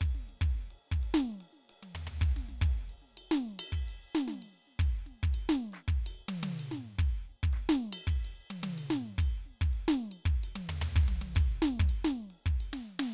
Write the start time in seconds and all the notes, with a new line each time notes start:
0.01 kick, hi-hat pedal, ride
0.15 snare
0.28 snare, ride
0.41 kick, ride
0.55 snare, hi-hat pedal
0.71 ride
0.87 snare
0.92 kick
1.03 ride
1.12 snare, hi-hat pedal
1.40 ride
1.53 snare
1.65 hi-hat pedal
1.69 ride
1.83 high tom
1.90 hi-hat pedal
1.95 floor tom
2.07 floor tom
2.21 kick, hi-hat pedal, ride
2.36 snare
2.49 snare, ride
2.61 kick, ride
2.75 snare, hi-hat pedal
2.89 ride bell
3.02 snare
3.17 ride bell
3.30 snare, hi-hat pedal
3.59 ride bell
3.69 kick, snare
3.86 hi-hat pedal, ride bell
4.15 snare
4.28 snare
4.41 hi-hat pedal, ride bell
4.53 snare
4.65 snare, hi-hat pedal
4.79 kick, ride bell
4.94 hi-hat pedal
5.06 snare
5.23 kick
5.34 ride bell
5.48 snare, hi-hat pedal
5.72 percussion, snare, ride
5.88 kick
6.03 hi-hat pedal, ride bell
6.28 high tom
6.43 high tom
6.57 hi-hat pedal, ride bell
6.71 snare
6.99 kick, ride bell
7.13 hi-hat pedal
7.29 snare
7.43 kick
7.53 snare, percussion, ride
7.67 snare, hi-hat pedal
7.93 ride bell
8.07 kick
8.23 hi-hat pedal, ride bell
8.50 high tom
8.63 high tom
8.77 hi-hat pedal, ride bell
8.90 snare
9.18 kick, ride bell
9.31 hi-hat pedal
9.46 snare
9.61 kick
9.73 ride
9.85 snare, hi-hat pedal
10.11 ride bell
10.25 kick
10.42 hi-hat pedal, ride bell
10.56 high tom
10.69 floor tom
10.81 floor tom
10.96 kick, hi-hat pedal, ride
11.08 high tom
11.21 high tom
11.35 kick, ride bell
11.52 hi-hat pedal
11.62 snare
11.80 kick
11.89 ride bell
12.05 snare, hi-hat pedal
12.30 ride
12.46 kick
12.60 hi-hat pedal, ride bell
12.73 snare
12.99 snare